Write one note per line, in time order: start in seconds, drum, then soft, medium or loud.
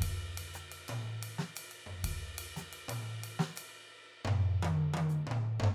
0.01 kick medium
0.01 ride loud
0.37 ride loud
0.54 cross-stick medium
0.54 hi-hat pedal medium
0.72 ride medium
0.88 mid tom loud
0.88 ride bell medium
1.03 hi-hat pedal soft
1.23 ride loud
1.38 snare medium
1.55 hi-hat pedal medium
1.55 ride loud
1.71 ride medium
1.86 floor tom medium
2.04 kick medium
2.04 ride loud
2.38 ride loud
2.56 snare medium
2.56 hi-hat pedal medium
2.73 ride medium
2.88 mid tom medium
2.88 ride loud
3.24 ride loud
3.39 snare medium
3.56 hi-hat pedal medium
3.56 ride loud
4.25 floor tom loud
4.25 mid tom loud
4.63 high tom loud
4.65 high tom loud
4.94 high tom loud
4.97 high tom loud
5.09 hi-hat pedal soft
5.27 mid tom loud
5.31 mid tom loud
5.60 floor tom loud
5.64 floor tom loud